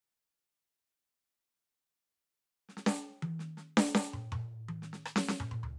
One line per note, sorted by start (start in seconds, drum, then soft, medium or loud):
2.69 snare soft
2.77 snare soft
2.86 snare loud
3.22 high tom loud
3.39 snare soft
3.57 snare soft
3.77 snare loud
3.95 snare loud
4.13 mid tom medium
4.32 mid tom medium
4.69 high tom medium
4.82 snare soft
4.93 snare soft
5.06 cross-stick medium
5.16 snare loud
5.28 snare medium
5.40 mid tom medium
5.51 mid tom medium
5.63 floor tom medium